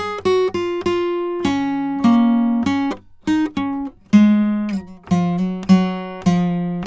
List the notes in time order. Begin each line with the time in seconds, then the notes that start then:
0.00 G#4
0.27 F#4
0.56 F4
0.87 F4
1.46 C#4
2.06 A#3
2.68 C#4
3.29 D#4
3.58 C#4
4.14 G#3
4.71 G3
5.12 F3
5.40 F#3
5.71 F#3
6.28 F3